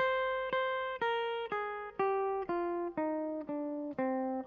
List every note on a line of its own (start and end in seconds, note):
0.00 0.52 C5
0.53 0.99 C5
1.02 1.50 A#4
1.52 1.92 G#4
1.99 2.46 G4
2.49 2.92 F4
2.98 3.46 D#4
3.49 3.95 D4
3.99 4.44 C4